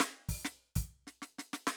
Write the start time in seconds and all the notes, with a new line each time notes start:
0.00 snare
0.29 open hi-hat, kick
0.40 hi-hat pedal
0.45 snare
0.76 open hi-hat, kick
1.07 snare
1.22 snare
1.39 snare
1.53 snare
1.67 snare